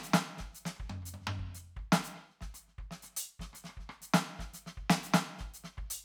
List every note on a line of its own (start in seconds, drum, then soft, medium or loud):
0.01 cross-stick soft
0.01 snare soft
0.01 hi-hat pedal medium
0.14 snare loud
0.19 cross-stick medium
0.27 snare soft
0.38 kick soft
0.38 snare soft
0.51 snare soft
0.51 hi-hat pedal medium
0.51 open hi-hat soft
0.66 snare medium
0.76 kick soft
0.76 cross-stick soft
0.76 snare soft
0.90 high tom loud
1.02 cross-stick soft
1.02 hi-hat pedal medium
1.14 high tom medium
1.19 snare soft
1.27 high tom loud
1.39 kick soft
1.54 snare soft
1.54 hi-hat pedal medium
1.77 kick soft
1.77 cross-stick soft
1.92 snare loud
1.99 cross-stick medium
2.04 snare soft
2.04 hi-hat pedal medium
2.16 cross-stick soft
2.30 snare soft
2.41 kick soft
2.41 snare soft
2.54 cross-stick soft
2.54 closed hi-hat soft
2.54 hi-hat pedal medium
2.68 snare soft
2.78 kick soft
2.78 cross-stick soft
2.91 snare medium
3.02 cross-stick soft
3.02 snare soft
3.02 closed hi-hat soft
3.02 hi-hat pedal medium
3.17 closed hi-hat loud
3.39 kick soft
3.39 snare soft
3.51 cross-stick soft
3.51 snare soft
3.51 hi-hat pedal medium
3.64 snare soft
3.69 cross-stick medium
3.77 kick soft
3.77 snare soft
3.89 cross-stick medium
4.01 snare soft
4.01 hi-hat pedal medium
4.14 snare loud
4.28 snare soft
4.39 kick soft
4.39 snare soft
4.53 snare soft
4.53 closed hi-hat soft
4.53 hi-hat pedal medium
4.66 snare soft
4.77 kick soft
4.77 snare soft
4.90 snare loud
5.03 snare soft
5.03 hi-hat pedal medium
5.14 snare loud
5.27 cross-stick soft
5.38 kick soft
5.38 snare soft
5.52 snare soft
5.52 hi-hat pedal medium
5.64 snare soft
5.77 kick soft
5.77 cross-stick soft
5.90 closed hi-hat loud